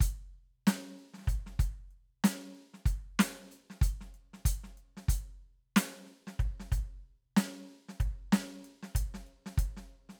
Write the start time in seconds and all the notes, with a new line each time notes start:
0.01 closed hi-hat, kick
0.67 closed hi-hat, snare
0.98 snare, closed hi-hat
1.14 snare
1.18 snare
1.22 snare
1.24 kick, snare
1.29 closed hi-hat
1.47 snare
1.60 closed hi-hat, kick
1.91 closed hi-hat
2.24 closed hi-hat, snare
2.55 closed hi-hat
2.74 snare
2.86 closed hi-hat, kick
3.20 closed hi-hat, snare
3.51 closed hi-hat, snare
3.70 snare
3.82 closed hi-hat, kick
4.01 snare
4.15 closed hi-hat
4.34 snare
4.46 closed hi-hat, kick
4.64 snare
4.78 closed hi-hat
4.97 snare
5.09 closed hi-hat, kick
5.77 closed hi-hat, snare
6.07 snare, closed hi-hat
6.28 snare
6.40 kick, closed hi-hat
6.60 snare
6.72 closed hi-hat, kick
7.37 closed hi-hat, snare
7.69 closed hi-hat
7.89 snare
8.00 kick, closed hi-hat
8.33 snare, closed hi-hat
8.64 snare, closed hi-hat
8.83 snare
8.95 kick, closed hi-hat
9.14 snare
9.27 closed hi-hat
9.46 snare
9.58 kick, closed hi-hat
9.77 snare
9.88 closed hi-hat
10.10 snare